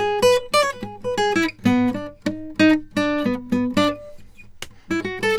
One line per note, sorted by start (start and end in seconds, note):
0.00 0.26 G#4
0.23 0.42 B4
0.55 0.64 D5
0.64 0.74 C#5
0.74 0.91 B4
1.06 1.22 B4
1.19 1.39 G#4
1.37 1.54 E4
1.96 2.15 D4
2.27 2.55 D#4
2.60 2.83 D#4
2.98 3.31 D4
3.78 3.96 D4
4.92 5.02 E4
5.24 5.38 A4